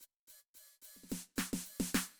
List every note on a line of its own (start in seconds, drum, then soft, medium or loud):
0.01 hi-hat pedal medium
0.27 hi-hat pedal medium
0.54 hi-hat pedal medium
0.82 hi-hat pedal medium
0.96 snare soft
1.03 snare soft
1.09 snare medium
1.09 hi-hat pedal medium
1.36 snare medium
1.36 hi-hat pedal medium
1.53 snare medium
1.64 hi-hat pedal medium
1.80 snare medium
1.93 snare medium
1.93 hi-hat pedal medium